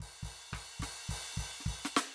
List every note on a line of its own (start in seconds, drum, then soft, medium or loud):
0.00 kick soft
0.00 crash medium
0.23 kick soft
0.23 crash medium
0.53 kick soft
0.53 cross-stick medium
0.53 crash medium
0.80 kick soft
0.80 snare medium
0.80 crash medium
1.09 kick soft
1.09 crash medium
1.33 kick soft
1.33 snare soft
1.39 crash medium
1.60 snare soft
1.66 kick medium
1.66 crash medium
1.85 snare medium
1.96 snare loud